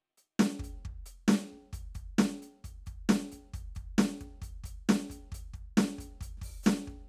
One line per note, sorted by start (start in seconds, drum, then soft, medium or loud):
0.17 closed hi-hat soft
0.39 snare loud
0.59 kick medium
0.64 closed hi-hat medium
0.85 kick medium
0.85 closed hi-hat soft
1.06 closed hi-hat medium
1.28 snare loud
1.32 snare medium
1.52 kick soft
1.73 closed hi-hat medium
1.73 kick medium
1.95 closed hi-hat soft
1.95 kick soft
2.18 snare loud
2.42 closed hi-hat soft
2.64 closed hi-hat soft
2.64 kick soft
2.86 closed hi-hat soft
2.86 kick soft
3.09 snare loud
3.32 closed hi-hat medium
3.32 kick soft
3.54 closed hi-hat soft
3.54 kick medium
3.75 closed hi-hat soft
3.75 kick soft
3.98 snare loud
4.21 kick soft
4.21 closed hi-hat soft
4.42 closed hi-hat soft
4.42 kick soft
4.64 closed hi-hat medium
4.64 kick soft
4.89 snare loud
5.10 closed hi-hat medium
5.10 kick soft
5.32 closed hi-hat medium
5.32 kick soft
5.54 kick soft
5.54 closed hi-hat soft
5.77 snare loud
5.98 closed hi-hat medium
5.98 kick soft
6.21 closed hi-hat medium
6.21 kick medium
6.21 snare soft
6.37 snare soft
6.41 open hi-hat medium
6.41 kick soft
6.63 snare loud
6.63 hi-hat pedal medium
6.87 kick soft
6.87 closed hi-hat soft